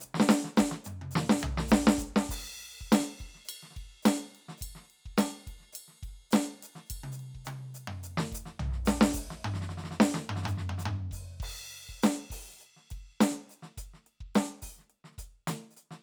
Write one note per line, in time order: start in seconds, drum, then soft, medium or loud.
0.01 hi-hat pedal loud
0.05 kick soft
0.15 snare medium
0.20 snare loud
0.29 snare loud
0.29 hi-hat pedal medium
0.44 snare medium
0.57 kick soft
0.57 snare loud
0.57 hi-hat pedal medium
0.72 snare medium
0.85 hi-hat pedal loud
0.85 mid tom medium
1.02 high tom medium
1.11 hi-hat pedal medium
1.16 snare loud
1.30 snare loud
1.39 hi-hat pedal medium
1.39 floor tom loud
1.58 snare loud
1.68 kick soft
1.68 snare loud
1.68 hi-hat pedal loud
1.87 snare loud
1.98 kick soft
1.98 hi-hat pedal loud
2.05 kick soft
2.16 snare loud
2.21 cross-stick soft
2.29 kick medium
2.29 hi-hat pedal loud
2.29 crash loud
2.81 kick soft
2.92 snare loud
2.92 ride bell loud
3.00 snare soft
3.20 kick soft
3.20 ride soft
3.35 snare soft
3.45 hi-hat pedal soft
3.45 ride bell loud
3.63 snare soft
3.71 snare soft
3.77 kick soft
3.77 ride soft
3.82 kick soft
4.03 snare loud
4.03 hi-hat pedal medium
4.03 ride bell loud
4.35 ride soft
4.49 snare soft
4.58 kick soft
4.58 hi-hat pedal soft
4.63 ride bell medium
4.67 kick soft
4.75 snare soft
4.81 snare soft
4.90 ride soft
5.06 kick soft
5.18 snare loud
5.18 hi-hat pedal medium
5.18 ride bell loud
5.47 kick soft
5.47 ride medium
5.60 snare soft
5.73 hi-hat pedal medium
5.73 ride bell medium
5.88 snare soft
5.94 snare soft
6.03 kick soft
6.03 ride soft
6.09 kick soft
6.31 snare loud
6.31 hi-hat pedal medium
6.31 ride bell loud
6.63 hi-hat pedal medium
6.63 ride medium
6.76 snare soft
6.86 hi-hat pedal soft
6.90 kick soft
6.90 ride bell medium
6.97 kick soft
7.00 kick soft
7.00 high tom loud
7.05 open hi-hat soft
7.12 hi-hat pedal medium
7.20 ride soft
7.35 kick soft
7.45 hi-hat pedal medium
7.45 high tom loud
7.45 ride medium
7.75 hi-hat pedal medium
7.75 ride medium
7.88 mid tom loud
8.03 hi-hat pedal medium
8.03 ride medium
8.18 snare loud
8.32 kick soft
8.32 hi-hat pedal loud
8.32 ride medium
8.38 kick soft
8.41 kick soft
8.46 snare soft
8.60 floor tom loud
8.73 snare soft
8.85 snare loud
8.85 hi-hat pedal loud
9.01 snare loud
9.08 snare soft
9.14 kick medium
9.14 hi-hat pedal loud
9.21 kick soft
9.31 snare medium
9.45 mid tom loud
9.54 snare medium
9.61 snare medium
9.69 snare medium
9.78 snare medium
9.84 snare medium
9.91 snare medium
10.00 snare loud
10.14 snare medium
10.30 mid tom loud
10.36 snare medium
10.43 snare medium
10.43 mid tom loud
10.48 hi-hat pedal medium
10.58 snare medium
10.70 mid tom loud
10.78 snare medium
10.78 hi-hat pedal medium
10.86 mid tom loud
11.11 kick soft
11.11 hi-hat pedal medium
11.17 kick soft
11.40 kick medium
11.40 crash loud
11.48 kick soft
11.89 kick soft
12.03 closed hi-hat loud
12.03 snare loud
12.30 open hi-hat medium
12.30 kick soft
12.36 kick soft
12.52 snare soft
12.60 open hi-hat soft
12.60 hi-hat pedal soft
12.77 snare soft
12.82 snare soft
12.86 snare soft
12.91 kick soft
12.91 closed hi-hat medium
12.97 kick soft
13.21 closed hi-hat loud
13.21 snare loud
13.31 snare soft
13.50 hi-hat pedal medium
13.50 open hi-hat soft
13.63 snare soft
13.78 closed hi-hat medium
13.78 kick soft
13.94 snare soft
14.02 snare soft
14.07 closed hi-hat soft
14.21 kick soft
14.35 closed hi-hat medium
14.35 snare loud
14.49 snare soft
14.62 open hi-hat medium
14.62 kick soft
14.79 snare soft
14.90 closed hi-hat soft
15.04 snare soft
15.12 snare soft
15.18 closed hi-hat medium
15.18 kick soft
15.48 closed hi-hat loud
15.48 snare loud
15.71 hi-hat pedal soft
15.77 closed hi-hat soft
15.91 snare soft